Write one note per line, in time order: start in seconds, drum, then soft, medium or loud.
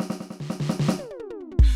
0.00 snare medium
0.10 snare medium
0.21 snare medium
0.31 snare medium
0.40 snare medium
0.50 snare medium
0.60 snare loud
0.69 snare loud
0.69 hi-hat pedal soft
0.80 snare loud
0.89 snare loud
0.99 high tom medium
1.11 high tom medium
1.19 mid tom medium
1.30 mid tom medium
1.40 floor tom soft
1.51 floor tom medium
1.59 kick loud
1.59 crash loud